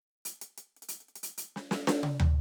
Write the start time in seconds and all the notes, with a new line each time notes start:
0.25 closed hi-hat
0.41 closed hi-hat
0.58 closed hi-hat
0.77 closed hi-hat
0.82 closed hi-hat
0.89 closed hi-hat
1.00 closed hi-hat
1.08 closed hi-hat
1.16 closed hi-hat
1.23 closed hi-hat
1.38 closed hi-hat
1.56 snare
1.71 snare
1.87 snare
2.03 high tom
2.20 floor tom